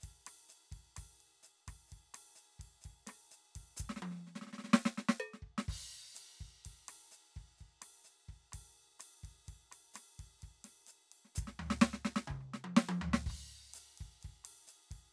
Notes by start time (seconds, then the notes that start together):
0.01 kick, hi-hat pedal, ride
0.27 cross-stick, ride
0.49 hi-hat pedal, ride
0.72 kick, ride
0.96 kick, cross-stick, snare, hi-hat pedal, ride
1.21 ride
1.43 hi-hat pedal, ride
1.68 kick, cross-stick, snare, ride
1.88 kick, hi-hat pedal, ride
2.14 cross-stick, snare, ride
2.36 hi-hat pedal, ride
2.60 kick, ride
2.81 hi-hat pedal, ride
2.85 kick
3.07 cross-stick, snare, ride, percussion
3.31 hi-hat pedal, ride
3.56 kick, ride
3.77 kick, hi-hat pedal, ride
3.90 snare
3.97 snare
4.02 high tom
4.11 snare
4.15 snare
4.18 snare
4.27 snare
4.36 snare
4.42 snare
4.47 snare
4.53 snare
4.59 snare
4.64 snare
4.69 snare
4.74 snare
4.86 snare
4.98 snare
5.09 snare
5.20 percussion
5.34 snare
5.42 kick
5.58 snare
5.68 kick, crash
5.74 kick
6.15 hi-hat pedal, ride
6.41 kick
6.65 kick, ride
6.88 cross-stick, snare, ride
7.12 hi-hat pedal
7.36 kick, ride
7.58 kick, hi-hat pedal, ride
7.82 cross-stick, snare, ride
8.04 hi-hat pedal
8.29 kick
8.50 kick, cross-stick, hi-hat pedal, ride
9.00 cross-stick, hi-hat pedal, ride
9.24 kick, ride
9.45 kick, hi-hat pedal, ride
9.72 cross-stick, ride
9.94 cross-stick, snare, hi-hat pedal, ride
10.19 kick, ride
10.39 hi-hat pedal, ride
10.43 kick
10.64 snare, ride
10.87 hi-hat pedal, ride
11.12 ride
11.25 snare
11.36 kick, hi-hat pedal, ride
11.44 kick, snare
11.60 floor tom
11.71 snare
11.82 snare
11.94 snare
12.05 snare
12.16 snare
12.28 kick, mid tom
12.36 kick
12.41 cross-stick
12.54 snare
12.64 high tom
12.77 snare
12.89 high tom
13.02 floor tom
13.14 snare
13.26 kick, cross-stick, crash
13.32 kick
13.74 hi-hat pedal, ride
13.98 kick, ride
14.21 kick, hi-hat pedal, ride
14.30 kick
14.44 cross-stick, ride
14.67 hi-hat pedal, ride
14.91 kick, ride